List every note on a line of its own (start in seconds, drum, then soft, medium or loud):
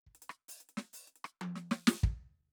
0.06 kick soft
0.15 closed hi-hat soft
0.22 closed hi-hat medium
0.29 cross-stick medium
0.48 hi-hat pedal loud
0.60 closed hi-hat medium
0.69 closed hi-hat soft
0.77 snare medium
0.93 hi-hat pedal loud
1.07 closed hi-hat soft
1.16 closed hi-hat soft
1.24 cross-stick medium
1.41 high tom medium
1.56 snare soft
1.71 snare medium
1.87 snare loud
2.03 kick medium